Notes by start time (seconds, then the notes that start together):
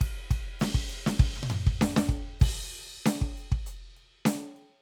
0.01 kick, hi-hat pedal, ride
0.31 kick, ride bell
0.60 snare, hi-hat pedal, ride
0.75 kick
0.90 hi-hat pedal, ride
1.07 snare
1.20 kick, ride
1.37 mid tom
1.44 high tom
1.50 hi-hat pedal, mid tom
1.67 kick
1.81 snare, hi-hat pedal
1.97 snare
2.09 kick
2.40 kick, hi-hat pedal, crash
2.98 kick
3.06 closed hi-hat, snare
3.22 kick
3.38 closed hi-hat
3.52 kick
3.67 closed hi-hat
3.97 closed hi-hat
4.26 closed hi-hat, snare
4.57 closed hi-hat